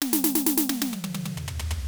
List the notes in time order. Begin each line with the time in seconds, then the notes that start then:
0.02 snare
0.13 snare
0.24 snare
0.35 snare
0.46 snare
0.58 snare
0.69 snare
0.82 snare
0.93 high tom
1.04 high tom
1.15 high tom
1.25 high tom
1.37 floor tom
1.48 floor tom
1.60 floor tom
1.71 floor tom